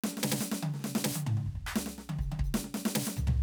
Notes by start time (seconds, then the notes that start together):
0.04 snare
0.11 snare
0.17 snare
0.23 snare
0.32 snare
0.41 snare
0.51 snare
0.63 high tom
0.74 snare
0.79 snare
0.84 snare
0.95 snare
1.04 snare
1.15 high tom
1.26 mid tom
1.37 high tom
1.46 kick
1.55 kick
1.66 percussion
1.76 snare
1.86 snare
1.98 snare
2.03 hi-hat pedal
2.09 high tom
2.19 kick, hi-hat pedal
2.31 high tom
2.39 kick
2.44 hi-hat pedal
2.54 snare
2.74 snare
2.85 snare
2.95 snare
3.07 snare
3.16 floor tom, hi-hat pedal
3.27 floor tom